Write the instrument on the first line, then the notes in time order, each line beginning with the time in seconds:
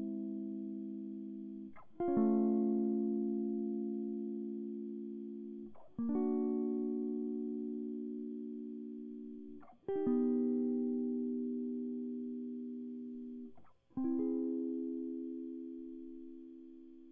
electric guitar
2.01 F4
2.09 C#4
2.18 A3
6.00 A#3
6.10 D4
6.16 F#4
8.74 F#4
9.89 G4
9.96 D#4
10.08 B3
13.98 C4
14.05 E4
14.20 G#4